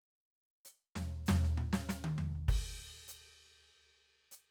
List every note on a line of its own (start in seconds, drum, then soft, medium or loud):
0.65 hi-hat pedal medium
0.95 snare medium
0.95 floor tom medium
1.26 snare medium
1.26 floor tom loud
1.26 hi-hat pedal medium
1.44 snare soft
1.58 mid tom medium
1.73 snare medium
1.89 snare medium
1.89 hi-hat pedal medium
2.04 high tom loud
2.18 floor tom medium
2.35 kick soft
2.48 kick medium
2.48 crash medium
3.08 hi-hat pedal medium
4.31 hi-hat pedal medium